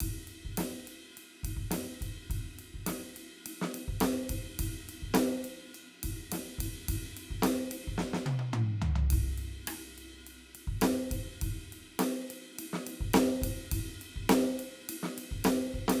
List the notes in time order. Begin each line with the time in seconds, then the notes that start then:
0.00 kick, ride
0.27 ride
0.45 kick
0.57 snare, ride
0.87 ride
1.17 ride
1.43 kick, ride
1.56 kick
1.71 snare, ride
2.01 kick, ride
2.30 kick, ride
2.59 ride
2.74 kick
2.82 kick
2.86 snare, ride
3.16 ride
3.46 ride
3.61 snare
3.74 ride
3.88 kick
4.00 snare, ride
4.29 kick, ride
4.59 kick, ride
4.89 ride
5.02 kick
5.10 kick, snare
5.15 ride
5.44 ride
5.74 ride bell
6.03 kick, ride
6.32 snare, ride
6.58 kick, ride
6.88 kick, ride
7.17 ride
7.30 kick
7.42 snare, ride
7.71 ride
7.87 kick
7.98 snare
8.13 snare
8.26 open hi-hat, high tom
8.39 high tom
8.53 mid tom
8.82 floor tom
8.95 floor tom
9.10 kick, ride
9.38 ride
9.67 cross-stick, ride
9.98 ride
10.27 ride
10.55 ride
10.67 kick
10.81 snare, ride
11.11 kick, ride
11.41 kick, ride
11.72 ride
11.99 snare, ride
12.30 ride
12.59 ride
12.73 snare
12.87 ride
13.00 kick
13.13 snare, ride
13.42 kick, ride
13.71 kick, ride
14.01 ride
14.16 kick
14.29 snare, ride
14.59 ride
14.89 ride
15.03 snare
15.18 ride
15.31 kick
15.44 snare, ride
15.74 kick
15.88 snare, ride